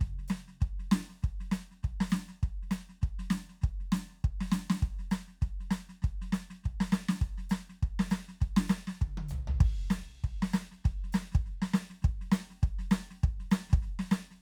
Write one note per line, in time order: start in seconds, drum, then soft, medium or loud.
0.01 kick medium
0.01 snare soft
0.19 snare soft
0.28 snare loud
0.28 hi-hat pedal medium
0.48 snare soft
0.61 kick medium
0.61 snare soft
0.80 snare soft
0.92 snare loud
0.92 hi-hat pedal medium
1.10 snare soft
1.23 kick medium
1.23 snare soft
1.41 snare soft
1.52 snare loud
1.52 hi-hat pedal medium
1.57 kick soft
1.72 snare soft
1.83 kick medium
1.83 snare soft
2.01 snare loud
2.10 snare loud
2.10 hi-hat pedal medium
2.29 snare soft
2.43 kick medium
2.43 snare soft
2.63 snare soft
2.71 snare loud
2.71 hi-hat pedal medium
2.89 snare soft
3.02 kick medium
3.02 snare soft
3.19 snare medium
3.31 snare loud
3.31 hi-hat pedal medium
3.49 snare soft
3.62 kick medium
3.62 snare soft
3.80 snare soft
3.92 snare loud
3.92 hi-hat pedal medium
4.10 snare soft
4.25 kick medium
4.25 snare soft
4.41 snare medium
4.52 snare loud
4.52 hi-hat pedal medium
4.70 snare loud
4.83 kick medium
4.83 snare soft
4.99 snare soft
5.11 snare loud
5.11 hi-hat pedal medium
5.28 snare soft
5.42 kick medium
5.42 snare soft
5.61 snare soft
5.71 snare loud
5.71 hi-hat pedal medium
5.89 snare soft
6.03 kick medium
6.03 snare soft
6.22 snare soft
6.33 snare loud
6.33 hi-hat pedal medium
6.51 snare medium
6.64 kick medium
6.64 snare soft
6.81 snare loud
6.92 snare loud
6.92 hi-hat pedal medium
7.09 snare loud
7.22 kick medium
7.22 snare soft
7.38 snare soft
7.50 snare loud
7.50 hi-hat pedal medium
7.55 kick soft
7.70 snare soft
7.83 kick medium
7.83 snare soft
8.00 snare loud
8.11 snare loud
8.11 hi-hat pedal medium
8.29 snare soft
8.41 kick medium
8.41 snare soft
8.57 snare loud
8.69 snare loud
8.69 hi-hat pedal medium
8.88 snare medium
9.02 kick medium
9.02 high tom medium
9.18 high tom loud
9.29 floor tom loud
9.29 hi-hat pedal medium
9.48 floor tom loud
9.61 kick loud
9.61 ride medium
9.81 kick soft
9.91 snare loud
9.91 hi-hat pedal medium
9.95 kick soft
10.24 kick medium
10.24 snare soft
10.43 snare loud
10.53 kick soft
10.53 snare loud
10.53 hi-hat pedal medium
10.72 snare soft
10.85 kick medium
10.85 snare soft
11.04 snare soft
11.13 snare loud
11.13 hi-hat pedal medium
11.32 kick loud
11.32 snare soft
11.46 snare soft
11.62 snare loud
11.73 kick soft
11.73 snare loud
11.73 hi-hat pedal medium
11.90 snare soft
12.02 kick loud
12.02 snare soft
12.21 snare soft
12.32 snare loud
12.32 hi-hat pedal medium
12.50 snare soft
12.63 kick loud
12.63 snare soft
12.79 snare soft
12.91 snare loud
12.91 hi-hat pedal medium
13.11 snare soft
13.23 kick loud
13.23 snare soft
13.40 snare soft
13.45 kick soft
13.51 snare loud
13.51 hi-hat pedal medium
13.67 kick soft
13.67 snare soft
13.73 kick loud
13.82 snare soft
13.99 snare medium
14.11 snare loud
14.11 hi-hat pedal medium
14.31 snare soft